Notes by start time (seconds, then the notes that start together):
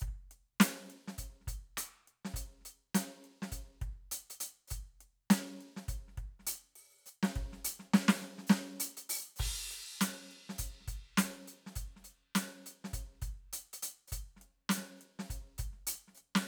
0.01 kick, closed hi-hat
0.08 kick
0.31 closed hi-hat
0.60 closed hi-hat, snare
0.69 snare
0.84 hi-hat pedal
0.90 closed hi-hat
1.08 snare
1.18 closed hi-hat, kick
1.41 snare
1.47 closed hi-hat, kick
1.77 closed hi-hat, cross-stick
2.07 closed hi-hat
2.25 snare
2.34 closed hi-hat, kick
2.61 snare
2.65 closed hi-hat
2.95 closed hi-hat, snare
3.24 closed hi-hat
3.42 snare
3.52 closed hi-hat, kick
3.81 kick, closed hi-hat
4.11 closed hi-hat
4.30 closed hi-hat
4.40 closed hi-hat
4.68 closed hi-hat, kick, hi-hat pedal
5.01 closed hi-hat
5.30 closed hi-hat, snare
5.61 closed hi-hat
5.76 snare
5.88 closed hi-hat, kick
6.08 snare
6.17 kick, closed hi-hat
6.39 snare
6.44 closed hi-hat, snare
6.75 open hi-hat
7.06 hi-hat pedal
7.23 snare
7.36 kick, closed hi-hat
7.42 kick
7.45 kick
7.53 snare
7.57 kick
7.65 closed hi-hat
7.79 snare
7.94 snare
8.08 snare
8.17 hi-hat pedal
8.22 snare
8.38 snare
8.47 snare, hi-hat pedal
8.80 closed hi-hat
8.97 closed hi-hat
9.09 open hi-hat
9.36 kick, hi-hat pedal, crash
9.46 kick
9.49 kick
9.70 closed hi-hat
10.01 closed hi-hat, snare
10.31 closed hi-hat
10.49 snare
10.58 closed hi-hat, kick
10.80 snare
10.88 closed hi-hat, kick
10.96 kick
11.17 closed hi-hat, snare
11.48 closed hi-hat
11.66 snare
11.76 closed hi-hat, kick
11.96 snare
12.02 closed hi-hat, snare
12.35 closed hi-hat, snare
12.49 snare
12.66 closed hi-hat
12.84 snare
12.93 closed hi-hat, kick
12.99 kick
13.14 snare
13.22 closed hi-hat, kick
13.28 kick
13.53 closed hi-hat
13.66 closed hi-hat
13.73 closed hi-hat
13.82 closed hi-hat
14.08 hi-hat pedal
14.12 closed hi-hat, kick
14.36 snare
14.41 closed hi-hat
14.69 closed hi-hat, snare
14.75 snare, closed hi-hat
14.97 hi-hat pedal
15.01 closed hi-hat
15.19 snare
15.30 closed hi-hat, kick
15.58 closed hi-hat, kick, snare
15.67 kick
15.73 snare
15.75 snare
15.87 closed hi-hat
16.08 snare
16.15 closed hi-hat, hi-hat pedal
16.35 snare